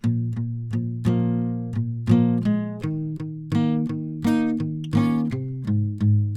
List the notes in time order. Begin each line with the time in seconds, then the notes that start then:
0.01 A#2 F3
0.34 A#2 F3
0.72 A#2 F3
1.06 A#2 F3 A#3
1.74 A#2 F3
2.08 A#2 F3
2.13 A#3
2.43 F3 G#3
2.82 D#3 G#3
3.21 D#3
3.52 D#3 A#3
3.88 D#3 A#3
4.25 A#3 D#4
4.59 D#3 A#3
4.94 D#3 A#3
4.98 C#4 F4
5.33 C3
5.66 G#2 C3
6.00 G#2 D#3